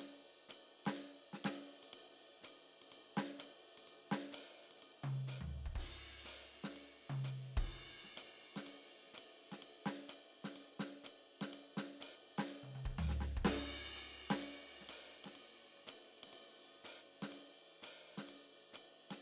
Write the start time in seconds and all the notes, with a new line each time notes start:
0.01 hi-hat pedal, ride
0.49 hi-hat pedal, ride
0.86 snare, ride
0.96 hi-hat pedal, ride
1.34 snare
1.45 snare, hi-hat pedal, ride
1.83 ride
1.94 ride
2.41 snare, hi-hat pedal
2.45 ride
2.82 ride
2.90 hi-hat pedal, ride
3.18 snare
3.40 hi-hat pedal, ride
3.78 ride
3.88 ride
4.12 snare
4.33 hi-hat pedal, ride
4.72 ride
4.77 hi-hat pedal
4.83 ride
5.04 high tom
5.28 hi-hat pedal, ride
5.41 floor tom
5.66 kick
5.76 kick, crash, ride
6.26 hi-hat pedal, ride
6.64 snare, ride
6.73 hi-hat pedal, ride
7.10 high tom
7.25 hi-hat pedal, ride
7.58 kick, ride
8.05 snare
8.18 hi-hat pedal, ride
8.57 snare, ride
8.65 hi-hat pedal, ride
9.07 snare
9.14 hi-hat pedal
9.19 ride
9.52 snare, ride
9.62 hi-hat pedal, ride
9.86 snare
10.10 hi-hat pedal, ride
10.45 snare, ride
10.54 hi-hat pedal, ride
10.80 snare
11.04 hi-hat pedal, ride
11.42 snare, ride
11.54 ride
11.78 snare
12.01 hi-hat pedal, ride
12.22 hi-hat pedal
12.39 snare, ride
12.51 ride
12.64 high tom
12.76 high tom
12.86 kick
12.99 floor tom, hi-hat pedal
13.10 snare
13.21 snare
13.37 kick
13.45 snare, ride
13.87 snare
13.96 hi-hat pedal, ride
14.31 snare, ride
14.43 hi-hat pedal, ride
14.81 snare
14.90 hi-hat pedal, ride
15.25 snare, ride
15.36 ride
15.76 snare
15.85 snare, hi-hat pedal
15.90 ride
16.24 snare, ride
16.34 ride
16.85 hi-hat pedal, ride
17.23 snare, ride
17.31 hi-hat pedal, ride
17.83 hi-hat pedal, ride
18.18 snare, ride
18.28 hi-hat pedal, ride
18.74 hi-hat pedal, ride
19.11 snare, ride
19.19 hi-hat pedal